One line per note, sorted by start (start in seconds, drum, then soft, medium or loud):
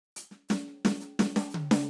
0.16 closed hi-hat loud
0.31 snare soft
0.49 snare loud
0.49 hi-hat pedal medium
0.67 snare soft
0.85 snare loud
1.00 snare soft
1.00 hi-hat pedal medium
1.19 snare loud
1.36 snare loud
1.50 hi-hat pedal medium
1.54 high tom loud
1.71 snare loud